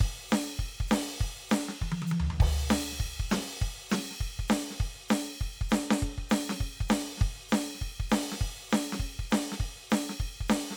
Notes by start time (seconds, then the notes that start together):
0.01 kick
0.29 snare, hi-hat pedal, crash
0.59 kick
0.81 kick
0.88 snare, hi-hat pedal
0.92 crash
1.21 kick
1.49 snare, hi-hat pedal, crash
1.69 snare
1.82 kick, high tom
1.92 high tom
2.02 high tom
2.08 hi-hat pedal
2.12 high tom
2.20 floor tom
2.31 floor tom, hi-hat pedal
2.41 kick, crash
2.69 snare, hi-hat pedal, crash
2.92 snare
3.00 kick
3.20 kick
3.29 snare, hi-hat pedal, crash
3.62 kick
3.90 snare, hi-hat pedal, crash
4.11 snare
4.21 kick
4.40 kick
4.48 snare, hi-hat pedal, crash
4.71 snare
4.80 kick
5.09 snare, hi-hat pedal, crash
5.41 kick
5.62 kick
5.69 snare, hi-hat pedal, crash
5.91 snare
6.03 kick
6.18 kick
6.30 snare, hi-hat pedal, crash
6.50 snare
6.61 kick
6.81 kick
6.89 snare, hi-hat pedal, crash
7.18 kick, snare
7.49 snare, hi-hat pedal
7.53 crash
7.75 snare
7.82 kick
8.00 kick
8.10 snare, hi-hat pedal, crash
8.32 snare
8.41 kick
8.70 snare, hi-hat pedal, crash
8.93 snare
9.00 kick
9.19 kick
9.30 snare, hi-hat pedal, crash
9.52 snare
9.60 kick
9.81 kick
9.90 snare, hi-hat pedal, crash
10.10 snare
10.20 kick
10.41 kick
10.49 snare, hi-hat pedal, crash
10.71 snare